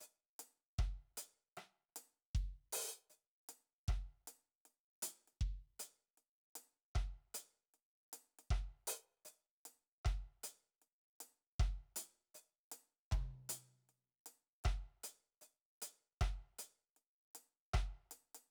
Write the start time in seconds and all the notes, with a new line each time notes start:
0.01 closed hi-hat, hi-hat pedal
0.40 closed hi-hat
0.79 kick, cross-stick, closed hi-hat
1.18 closed hi-hat
1.57 cross-stick, closed hi-hat
1.96 closed hi-hat
2.35 kick, closed hi-hat
2.73 open hi-hat
3.10 closed hi-hat, hi-hat pedal
3.49 closed hi-hat
3.88 kick, cross-stick, closed hi-hat
4.28 closed hi-hat
4.66 closed hi-hat
5.03 closed hi-hat
5.28 closed hi-hat
5.41 kick
5.80 closed hi-hat
6.18 closed hi-hat
6.56 closed hi-hat
6.96 kick, cross-stick, closed hi-hat
7.35 closed hi-hat
7.74 closed hi-hat
8.13 closed hi-hat
8.39 closed hi-hat
8.51 kick, cross-stick
8.88 open hi-hat
9.25 closed hi-hat, hi-hat pedal
9.66 closed hi-hat
10.05 kick, cross-stick, closed hi-hat
10.44 closed hi-hat
10.82 closed hi-hat
11.21 closed hi-hat
11.60 kick, cross-stick, closed hi-hat
11.96 open hi-hat
12.35 closed hi-hat, hi-hat pedal
12.72 closed hi-hat
13.12 kick, closed hi-hat, high tom
13.50 closed hi-hat
13.89 closed hi-hat
14.26 closed hi-hat
14.64 kick, cross-stick, closed hi-hat
15.04 closed hi-hat
15.42 closed hi-hat, hi-hat pedal
15.82 closed hi-hat
16.21 kick, cross-stick, closed hi-hat
16.59 closed hi-hat
16.97 closed hi-hat
17.35 closed hi-hat
17.74 kick, cross-stick, closed hi-hat
18.12 closed hi-hat
18.35 closed hi-hat